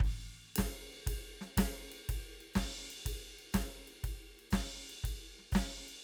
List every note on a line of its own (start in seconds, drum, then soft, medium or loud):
0.01 kick medium
0.01 crash soft
0.56 kick soft
0.56 snare medium
0.56 hi-hat pedal medium
0.56 ride loud
0.93 ride soft
1.07 kick medium
1.07 ride loud
1.42 snare soft
1.58 kick medium
1.58 snare loud
1.58 hi-hat pedal soft
1.58 ride loud
1.93 ride medium
2.09 kick medium
2.09 ride medium
2.41 ride soft
2.54 kick soft
2.54 snare medium
2.54 hi-hat pedal soft
2.54 ride medium
2.91 ride soft
3.06 kick soft
3.06 ride medium
3.39 ride soft
3.53 kick soft
3.53 snare medium
3.53 hi-hat pedal soft
3.53 ride loud
3.88 ride soft
4.04 kick soft
4.04 ride medium
4.40 ride soft
4.51 kick soft
4.51 snare medium
4.51 hi-hat pedal medium
4.51 ride medium
4.90 ride soft
5.04 kick soft
5.04 ride medium
5.40 snare soft
5.52 kick medium
5.52 snare loud
5.52 hi-hat pedal medium
5.52 ride medium
5.89 ride soft